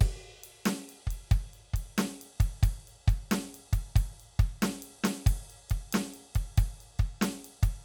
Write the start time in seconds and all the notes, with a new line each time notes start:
0.01 kick, crash
0.44 ride
0.66 snare, ride
0.89 ride
1.07 kick, ride
1.31 kick, ride
1.54 ride
1.74 kick, ride
1.98 snare, ride
2.22 ride
2.40 kick, ride
2.63 kick, ride
2.88 ride
3.08 kick, ride
3.31 snare, ride
3.55 ride
3.73 kick, ride
3.96 kick, ride
4.20 ride
4.39 kick, ride
4.62 snare, ride
4.82 ride
5.04 snare, ride
5.26 kick, ride
5.50 ride
5.70 kick, ride
5.93 snare, ride
6.14 ride
6.35 kick, ride
6.58 kick, ride
6.81 ride
6.99 kick, ride
7.22 snare, ride
7.45 ride
7.63 kick, ride